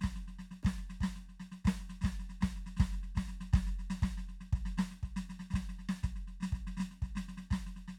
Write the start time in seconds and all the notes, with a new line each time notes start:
0.01 snare
0.04 kick, snare
0.16 snare
0.28 snare
0.39 snare
0.51 snare
0.63 kick, cross-stick, snare
0.78 snare
0.90 snare
1.01 kick, snare
1.03 snare
1.16 snare
1.29 snare
1.40 snare
1.52 snare
1.65 kick, snare
1.67 snare
1.80 snare
1.89 snare
2.01 kick, snare
2.05 snare
2.19 snare
2.29 snare
2.41 snare
2.43 kick, snare
2.56 snare
2.66 snare
2.77 kick, snare
2.81 snare
2.92 snare
3.03 snare
3.15 kick, snare
3.18 snare
3.28 snare
3.41 snare
3.53 kick, snare
3.55 snare
3.67 snare
3.79 snare
3.90 snare
4.02 kick, snare
4.18 snare
4.29 snare
4.41 snare
4.53 kick, snare
4.66 snare
4.78 snare
4.91 snare
5.03 kick, snare
5.16 snare
5.30 snare
5.51 kick, snare
5.55 snare
5.69 snare
6.03 kick, snare
6.16 snare
6.28 snare
6.40 snare
6.43 snare
6.52 kick, snare
6.67 snare
6.77 snare
6.80 snare
6.91 snare
7.02 kick, snare
7.15 snare
7.28 snare
7.38 snare
7.51 kick, snare
7.53 snare
7.66 snare
7.76 snare
7.88 snare